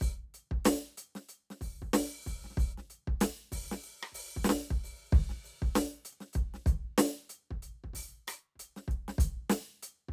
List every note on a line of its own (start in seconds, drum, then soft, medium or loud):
0.01 open hi-hat medium
0.01 kick medium
0.09 hi-hat pedal soft
0.34 closed hi-hat medium
0.51 kick medium
0.65 closed hi-hat medium
0.65 snare loud
0.98 closed hi-hat medium
1.15 snare medium
1.29 closed hi-hat medium
1.51 snare soft
1.61 open hi-hat medium
1.61 kick medium
1.82 kick medium
1.94 open hi-hat loud
1.94 snare loud
2.26 open hi-hat medium
2.26 kick medium
2.44 snare soft
2.50 snare soft
2.57 open hi-hat medium
2.57 kick loud
2.78 snare soft
2.90 closed hi-hat medium
3.08 kick medium
3.21 closed hi-hat loud
3.21 snare loud
3.52 open hi-hat medium
3.52 kick medium
3.64 kick soft
3.72 snare medium
3.84 open hi-hat medium
4.03 cross-stick medium
4.12 open hi-hat loud
4.12 kick soft
4.37 kick medium
4.45 kick soft
4.45 snare loud
4.49 snare medium
4.71 kick medium
4.84 open hi-hat medium
5.13 kick loud
5.13 crash soft
5.29 snare soft
5.44 open hi-hat medium
5.62 kick medium
5.75 open hi-hat medium
5.75 snare loud
5.81 hi-hat pedal soft
6.05 closed hi-hat medium
6.13 closed hi-hat soft
6.21 snare soft
6.33 closed hi-hat soft
6.33 kick medium
6.54 snare soft
6.66 closed hi-hat soft
6.66 kick loud
6.98 closed hi-hat loud
6.98 snare loud
7.30 closed hi-hat medium
7.51 kick medium
7.63 closed hi-hat medium
7.84 kick soft
7.94 open hi-hat medium
7.94 kick soft
8.28 open hi-hat loud
8.28 cross-stick medium
8.56 closed hi-hat medium
8.56 kick soft
8.77 snare soft
8.88 kick medium
8.88 closed hi-hat soft
9.08 snare medium
9.18 closed hi-hat medium
9.18 kick loud
9.50 closed hi-hat medium
9.50 snare loud
9.61 snare soft
9.83 closed hi-hat medium
10.09 kick medium